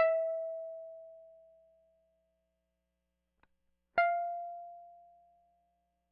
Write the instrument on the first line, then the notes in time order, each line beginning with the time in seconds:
electric guitar
0.00 E5
3.98 F5